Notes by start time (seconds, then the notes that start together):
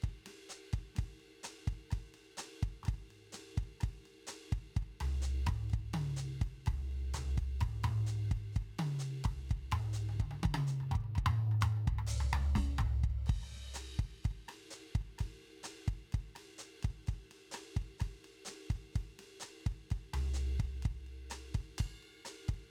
0.01 kick, hi-hat pedal, ride
0.09 kick
0.27 snare, ride
0.50 hi-hat pedal, ride
0.74 kick, ride
0.79 kick
0.96 kick, snare, ride
1.04 kick
1.20 ride
1.44 cross-stick, hi-hat pedal, ride
1.68 kick, ride
1.73 kick
1.91 kick, cross-stick, ride
1.98 kick
2.15 ride
2.38 cross-stick, snare, hi-hat pedal, ride
2.63 kick, ride
2.68 kick
2.84 cross-stick, snare, hi-hat pedal, mid tom, ride
2.89 kick
2.94 kick
3.11 ride
3.33 snare, hi-hat pedal, crash, ride
3.58 kick, ride
3.63 kick
3.81 kick, cross-stick, ride
3.89 kick
4.06 ride
4.27 cross-stick, hi-hat pedal, ride
4.53 kick, ride
4.58 kick
4.75 kick, hi-hat pedal, ride
4.83 kick
5.01 floor tom, ride
5.23 hi-hat pedal
5.47 kick, mid tom, ride
5.54 kick
5.70 hi-hat pedal, ride
5.74 kick
5.80 kick
5.94 high tom, ride
6.17 hi-hat pedal, ride
6.42 kick, ride
6.47 kick
6.67 kick, floor tom, hi-hat pedal, ride
6.74 kick
6.92 ride
7.14 floor tom, hi-hat pedal, ride
7.38 kick, ride
7.44 kick
7.60 kick, hi-hat pedal, mid tom, ride
7.69 kick
7.84 mid tom, ride
8.07 hi-hat pedal, ride
8.32 kick, ride
8.37 kick
8.53 kick, hi-hat pedal, ride
8.62 kick
8.79 high tom, ride
9.00 hi-hat pedal, ride
9.25 kick, floor tom, ride
9.32 kick
9.50 kick, ride
9.57 kick
9.72 mid tom, ride
9.94 hi-hat pedal
9.98 ride
10.09 high tom
10.20 kick, high tom
10.25 kick
10.31 high tom
10.44 kick, high tom
10.55 high tom
10.68 hi-hat pedal
10.81 mid tom
10.92 kick, mid tom
11.01 kick, mid tom
11.16 kick, mid tom
11.27 mid tom
11.39 mid tom
11.52 mid tom
11.62 hi-hat pedal, mid tom
11.77 mid tom
11.88 kick, floor tom
11.99 floor tom
12.07 kick, hi-hat pedal
12.21 floor tom
12.32 kick, floor tom
12.56 kick, snare
12.62 kick
12.79 kick, mid tom
12.87 kick
13.04 kick
13.10 kick
13.27 kick, crash
13.36 kick
13.42 cross-stick
13.44 cross-stick
13.57 snare
13.75 cross-stick, snare, hi-hat pedal, ride
14.00 kick, ride
14.05 kick
14.25 kick, ride
14.31 kick
14.49 cross-stick, snare, ride
14.71 hi-hat pedal, ride
14.96 kick, ride
15.01 kick
15.19 kick, cross-stick, hi-hat pedal, ride
15.26 kick
15.64 cross-stick, hi-hat pedal, ride
15.88 kick, ride
15.94 kick
16.12 kick, hi-hat pedal, ride
16.20 kick
16.36 cross-stick, ride
16.59 hi-hat pedal, ride
16.83 kick, ride
16.90 kick
17.07 kick, hi-hat pedal, ride
17.14 kick
17.32 ride
17.52 cross-stick, hi-hat pedal, ride
17.77 kick, ride
17.82 kick
17.99 kick, cross-stick, snare, hi-hat pedal, ride
18.07 kick
18.25 ride
18.46 snare, hi-hat pedal, ride
18.71 kick, ride
18.76 kick
18.93 kick, hi-hat pedal, ride
19.01 kick
19.20 snare, ride
19.41 cross-stick, hi-hat pedal, ride
19.67 kick, ride
19.72 kick
19.91 kick, ride
19.97 kick
20.14 floor tom, ride
20.34 hi-hat pedal, ride
20.60 kick, ride
20.65 kick
20.83 kick, ride
20.91 kick
21.07 ride
21.31 cross-stick, snare, hi-hat pedal, ride
21.55 kick, ride
21.61 kick
21.79 kick, ride bell
21.86 kick
22.03 ride
22.26 cross-stick, hi-hat pedal, ride
22.49 kick, ride
22.55 kick